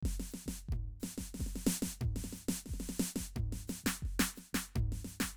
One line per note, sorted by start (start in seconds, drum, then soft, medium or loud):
0.02 kick soft
0.02 snare soft
0.19 snare soft
0.29 hi-hat pedal medium
0.34 snare soft
0.46 kick soft
0.46 snare medium
0.69 kick soft
0.69 floor tom medium
1.00 snare medium
1.00 hi-hat pedal medium
1.18 kick soft
1.18 snare soft
1.34 snare soft
1.40 kick soft
1.40 snare soft
1.46 snare soft
1.55 snare soft
1.66 snare loud
1.66 hi-hat pedal medium
1.82 kick soft
1.82 snare medium
2.01 kick soft
2.01 floor tom medium
2.16 snare soft
2.24 snare soft
2.32 snare soft
2.32 hi-hat pedal soft
2.48 kick soft
2.48 snare medium
2.66 kick soft
2.66 snare soft
2.73 snare soft
2.80 snare soft
2.89 snare soft
2.99 snare medium
2.99 hi-hat pedal soft
3.16 kick soft
3.16 snare medium
3.36 kick soft
3.36 floor tom medium
3.52 snare soft
3.67 snare medium
3.67 hi-hat pedal medium
3.84 kick soft
3.84 snare medium
4.02 kick soft
4.02 snare soft
4.19 snare loud
4.35 snare soft
4.35 hi-hat pedal medium
4.53 kick soft
4.53 snare medium
4.75 kick soft
4.75 floor tom medium
4.92 snare soft
5.04 snare soft
5.04 hi-hat pedal soft
5.20 kick soft
5.20 snare medium